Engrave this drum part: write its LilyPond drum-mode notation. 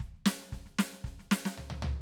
\new DrumStaff \drummode { \time 4/4 \tempo 4 = 114 <bd sn>16 sn16 sn16 sn16 <bd sn>16 sn16 sn16 sn16 <bd sn>16 sn16 sn16 sn16 tomfh16 tomfh16 tomfh8 | }